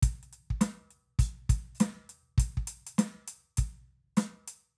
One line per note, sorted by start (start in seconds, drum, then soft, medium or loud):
0.03 kick loud
0.03 closed hi-hat loud
0.23 closed hi-hat soft
0.33 closed hi-hat medium
0.50 kick medium
0.61 snare loud
0.61 closed hi-hat loud
0.91 closed hi-hat soft
1.19 closed hi-hat loud
1.19 kick loud
1.49 kick loud
1.49 closed hi-hat loud
1.75 hi-hat pedal medium
1.80 snare loud
1.80 closed hi-hat loud
2.09 closed hi-hat medium
2.38 kick loud
2.38 closed hi-hat loud
2.57 kick medium
2.67 closed hi-hat loud
2.87 closed hi-hat medium
2.98 snare loud
2.98 closed hi-hat loud
3.28 closed hi-hat loud
3.57 kick loud
3.57 closed hi-hat loud
4.17 closed hi-hat loud
4.17 snare loud
4.48 closed hi-hat loud